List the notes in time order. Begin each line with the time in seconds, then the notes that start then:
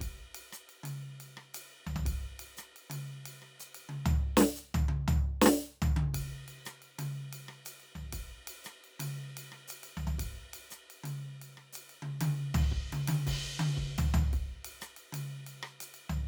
0.01 kick, ride
0.17 ride
0.35 ride
0.53 cross-stick, hi-hat pedal
0.69 ride
0.84 mid tom, ride
1.21 ride
1.37 cross-stick
1.54 hi-hat pedal, ride
1.87 floor tom
1.96 floor tom
2.06 kick, ride
2.40 ride
2.57 cross-stick, hi-hat pedal
2.76 ride
2.90 mid tom, ride
3.26 ride
3.42 cross-stick
3.60 hi-hat pedal, ride bell
3.75 ride
3.89 mid tom
4.06 floor tom
4.37 snare
4.41 snare
4.56 hi-hat pedal
4.75 floor tom
4.89 mid tom
5.08 floor tom
5.42 snare
5.46 snare
5.60 hi-hat pedal
5.82 floor tom
5.97 mid tom
6.14 kick, ride
6.48 ride
6.66 cross-stick, hi-hat pedal
6.82 ride
6.99 mid tom, ride
7.33 ride
7.49 cross-stick
7.66 hi-hat pedal, ride
7.80 ride
7.96 floor tom
8.13 kick, ride
8.48 ride
8.65 cross-stick, hi-hat pedal
8.84 ride
9.00 mid tom, ride
9.37 ride
9.52 cross-stick
9.68 hi-hat pedal, ride
9.84 ride
9.97 floor tom
10.07 floor tom
10.19 kick, ride
10.54 ride
10.71 cross-stick, hi-hat pedal
10.90 ride
11.04 mid tom, ride
11.42 ride
11.58 cross-stick
11.73 hi-hat pedal, ride
11.90 ride
12.03 mid tom
12.21 mid tom, ride
12.55 floor tom, ride
12.72 kick
12.93 mid tom, ride
13.08 mid tom, ride
13.27 kick, ride
13.60 mid tom, ride
13.77 kick
13.98 floor tom, ride
14.14 floor tom
14.33 kick, ride
14.65 ride
14.82 cross-stick, hi-hat pedal
14.97 ride
15.13 mid tom, ride
15.47 ride
15.63 cross-stick
15.81 hi-hat pedal, ride
15.94 ride
16.10 floor tom